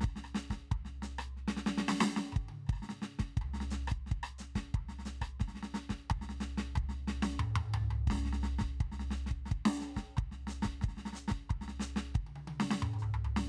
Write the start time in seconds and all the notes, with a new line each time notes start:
0.01 kick, snare
0.09 cross-stick
0.15 snare
0.24 cross-stick
0.35 snare, hi-hat pedal
0.50 kick, snare
0.72 kick, floor tom
0.85 snare
1.03 snare, hi-hat pedal
1.19 cross-stick
1.37 snare
1.48 snare
1.57 snare
1.67 snare
1.78 snare
1.88 snare
2.01 snare
2.17 snare
2.33 kick, mid tom
2.49 high tom
2.67 kick, cross-stick
2.73 kick, cross-stick
2.77 cross-stick
2.82 snare
2.89 snare
3.02 snare
3.19 kick, snare
3.37 kick
3.42 floor tom
3.54 snare
3.61 snare
3.71 snare, hi-hat pedal
3.88 cross-stick
3.92 kick
4.07 snare
4.12 kick
4.23 cross-stick
4.39 snare, hi-hat pedal
4.56 kick, snare
4.74 kick, floor tom
4.89 snare
4.99 snare
5.05 snare, hi-hat pedal
5.22 kick, cross-stick
5.40 kick, snare
5.48 snare
5.54 snare
5.55 snare
5.63 snare
5.74 snare, hi-hat pedal
5.90 kick, snare
6.10 kick, floor tom
6.22 snare
6.29 snare
6.41 snare, hi-hat pedal
6.58 snare
6.76 kick, floor tom
6.89 snare
7.08 snare
7.23 snare
7.40 mid tom
7.56 mid tom
7.74 floor tom
7.91 floor tom
8.08 kick, snare
8.16 snare
8.22 snare
8.25 snare
8.33 snare
8.41 snare, hi-hat pedal
8.59 kick, snare
8.81 kick, floor tom
8.92 snare
9.00 snare
9.11 snare, hi-hat pedal
9.27 snare
9.31 kick
9.46 snare
9.52 kick
9.66 snare
9.81 snare, hi-hat pedal
9.97 kick, snare
10.17 kick, floor tom
10.32 snare
10.47 snare, hi-hat pedal
10.63 kick, snare
10.82 kick, snare
10.89 snare
10.94 snare
10.97 snare
11.06 snare
11.13 snare, hi-hat pedal
11.28 kick, snare
11.50 kick, floor tom
11.61 snare
11.68 snare
11.80 snare, hi-hat pedal
11.96 snare
12.15 kick, high tom
12.27 high tom
12.36 high tom
12.48 high tom
12.60 snare
12.71 snare
12.78 hi-hat pedal
12.82 mid tom
12.94 mid tom
12.99 floor tom, hi-hat pedal
13.14 floor tom
13.25 floor tom
13.37 snare